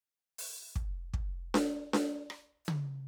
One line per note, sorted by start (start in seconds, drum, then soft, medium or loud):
0.38 open hi-hat loud
0.73 kick medium
0.73 hi-hat pedal soft
1.13 kick medium
1.13 ride soft
1.54 snare loud
1.93 snare medium
2.30 cross-stick medium
2.65 hi-hat pedal soft
2.65 high tom loud